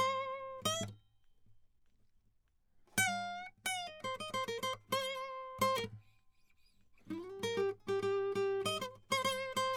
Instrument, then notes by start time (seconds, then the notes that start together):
acoustic guitar
0.01 C5
0.66 D#5
2.98 F#5
3.66 F#5
4.05 C5
4.34 C5
4.49 A#4
4.63 C5
4.93 C#5
5.03 C5
5.16 C5
5.62 C5
7.11 F#4
7.58 G4
7.89 G4
8.04 G4
8.36 G4
8.66 D#5
8.82 C5
9.23 C5
9.33 C5
9.57 C5